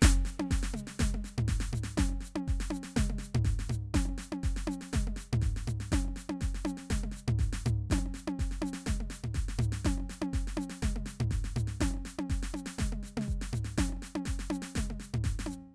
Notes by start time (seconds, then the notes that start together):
0.01 kick, snare, hi-hat pedal, high tom
0.25 snare, hi-hat pedal
0.40 high tom
0.51 kick, snare, hi-hat pedal
0.63 snare
0.74 hi-hat pedal, mid tom
0.87 snare
0.99 kick, snare, hi-hat pedal, mid tom
1.14 mid tom
1.24 snare, hi-hat pedal
1.38 floor tom
1.48 kick, snare, hi-hat pedal
1.60 snare
1.73 floor tom, hi-hat pedal
1.84 snare
1.98 kick, snare, hi-hat pedal, high tom
2.09 high tom
2.12 high tom
2.21 snare, hi-hat pedal
2.36 high tom
2.48 kick, snare, hi-hat pedal
2.60 snare
2.71 hi-hat pedal, high tom
2.83 snare
2.97 kick, snare, hi-hat pedal, mid tom
3.10 mid tom
3.19 snare, hi-hat pedal
3.35 floor tom
3.45 kick, snare, hi-hat pedal
3.59 snare
3.70 floor tom, hi-hat pedal
3.94 kick, snare, hi-hat pedal, high tom
4.05 high tom
4.09 high tom
4.18 snare, hi-hat pedal
4.32 high tom
4.43 kick, snare, hi-hat pedal
4.56 snare
4.67 hi-hat pedal, high tom
4.81 snare
4.93 kick, snare, hi-hat pedal, mid tom
5.07 mid tom
5.16 snare, hi-hat pedal
5.33 floor tom
5.42 kick, snare, hi-hat pedal
5.56 snare
5.68 floor tom, hi-hat pedal
5.80 snare
5.92 kick, snare, hi-hat pedal, high tom
6.05 high tom
6.08 high tom
6.16 snare, hi-hat pedal
6.30 high tom
6.41 kick, snare, hi-hat pedal
6.55 snare
6.65 hi-hat pedal, high tom
6.77 snare
6.90 kick, snare, hi-hat pedal, mid tom
7.04 mid tom
7.12 snare
7.16 hi-hat pedal
7.28 floor tom
7.39 kick, snare, hi-hat pedal
7.53 snare
7.65 floor tom, hi-hat pedal
7.90 kick, snare, hi-hat pedal, high tom
7.98 high tom
8.06 high tom
8.14 snare, hi-hat pedal
8.28 high tom
8.39 kick, snare, hi-hat pedal
8.51 snare
8.62 hi-hat pedal, high tom
8.73 snare
8.86 kick, snare, hi-hat pedal, mid tom
9.00 mid tom
9.10 snare, hi-hat pedal
9.24 floor tom
9.35 kick, snare, hi-hat pedal
9.49 snare
9.59 floor tom, hi-hat pedal
9.72 snare
9.85 kick, snare, hi-hat pedal, high tom
9.98 high tom
10.00 high tom
10.10 snare, hi-hat pedal
10.22 high tom
10.34 kick, snare, hi-hat pedal
10.47 snare
10.57 hi-hat pedal, high tom
10.70 snare
10.82 kick, snare, hi-hat pedal, mid tom
10.96 mid tom
11.06 snare, hi-hat pedal
11.20 floor tom
11.31 kick, snare, hi-hat pedal
11.44 snare
11.56 floor tom, hi-hat pedal
11.68 snare
11.81 kick, snare, hi-hat pedal, high tom
11.91 high tom
11.94 high tom
11.97 high tom
12.05 snare, hi-hat pedal
12.19 high tom
12.30 kick, snare, hi-hat pedal
12.43 snare
12.54 hi-hat pedal, high tom
12.66 snare
12.79 kick, snare, hi-hat pedal, mid tom
12.92 mid tom
13.03 snare, hi-hat pedal
13.17 snare, mid tom
13.28 kick, hi-hat pedal
13.42 snare
13.53 floor tom, hi-hat pedal
13.65 snare
13.78 kick, snare, hi-hat pedal, high tom
13.89 high tom
13.92 high tom
13.97 high tom
14.02 snare, hi-hat pedal
14.15 high tom
14.26 kick, snare, hi-hat pedal
14.39 snare
14.50 hi-hat pedal, high tom
14.62 snare
14.76 kick, snare, hi-hat pedal, mid tom
14.90 mid tom
15.00 snare, hi-hat pedal
15.14 floor tom
15.24 kick, snare, hi-hat pedal
15.39 snare
15.46 high tom
15.51 hi-hat pedal